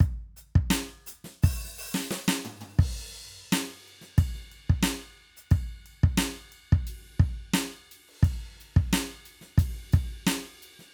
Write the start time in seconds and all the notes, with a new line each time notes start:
0.01 closed hi-hat, kick
0.37 closed hi-hat
0.56 kick
0.71 closed hi-hat, snare
1.07 closed hi-hat
1.25 snare
1.43 open hi-hat, kick
1.66 snare
1.70 snare
1.79 open hi-hat
1.95 snare
2.12 snare
2.29 snare
2.46 floor tom
2.62 floor tom
2.80 kick, crash
3.30 hi-hat pedal
3.53 snare, hi-hat pedal, ride
3.89 ride bell
4.02 snare
4.19 kick, ride bell
4.35 snare
4.41 snare
4.53 ride bell
4.71 kick, snare
4.84 snare, ride bell
5.37 closed hi-hat
5.52 kick, ride bell
5.76 snare
5.87 ride bell
6.04 kick
6.18 snare, ride bell
6.53 ride bell
6.73 kick
6.88 ride
7.21 kick
7.55 snare, ride bell
7.92 ride
8.09 crash
8.24 kick, ride bell
8.61 ride
8.77 kick
8.94 snare, ride bell
9.26 ride
9.42 snare
9.59 kick, ride
9.74 snare
9.82 snare
9.93 kick, ride
10.28 snare, ride
10.63 ride
10.80 snare